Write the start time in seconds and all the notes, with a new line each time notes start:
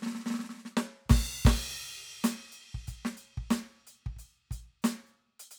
0.01 snare
0.03 snare
0.07 snare
0.10 snare
0.13 snare
0.16 snare
0.20 snare
0.24 snare
0.27 snare
0.31 snare
0.35 snare
0.40 snare
0.45 snare
0.55 snare
0.58 snare
0.66 snare
0.72 cross-stick
0.78 snare
1.07 kick, snare, hi-hat pedal
1.11 kick, crash
1.42 kick
1.46 kick, snare, crash
2.23 closed hi-hat, snare, hi-hat pedal
2.53 closed hi-hat
2.75 kick
2.88 closed hi-hat, kick
3.06 snare
3.18 closed hi-hat
3.38 kick
3.51 closed hi-hat, snare
3.88 closed hi-hat
4.03 kick, snare
4.17 open hi-hat, kick
4.50 closed hi-hat, kick, snare, hi-hat pedal
4.83 closed hi-hat, snare, hi-hat pedal
5.07 hi-hat pedal
5.40 closed hi-hat
5.52 closed hi-hat